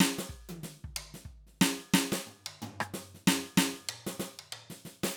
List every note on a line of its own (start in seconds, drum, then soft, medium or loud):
0.00 snare loud
0.18 snare loud
0.29 kick soft
0.49 high tom loud
0.63 snare medium
0.84 kick soft
0.96 high tom loud
1.14 snare medium
1.25 kick soft
1.47 snare soft
1.51 snare soft
1.55 snare soft
1.58 snare soft
1.61 snare loud
1.78 snare soft
1.83 snare soft
1.86 snare soft
1.92 snare soft
1.92 snare loud
2.12 snare loud
2.26 floor tom medium
2.46 high tom loud
2.62 floor tom loud
2.80 cross-stick medium
2.94 snare medium
3.14 snare soft
3.27 snare loud
3.44 snare soft
3.47 snare soft
3.51 snare soft
3.54 snare soft
3.57 snare loud
3.74 snare soft
3.78 snare soft
3.81 snare soft
3.85 snare soft
3.85 mid tom loud
4.06 snare loud
4.19 snare loud
4.39 high tom medium
4.52 mid tom loud
4.70 snare medium
4.85 snare medium
5.03 open hi-hat loud
5.03 snare loud
5.12 hi-hat pedal medium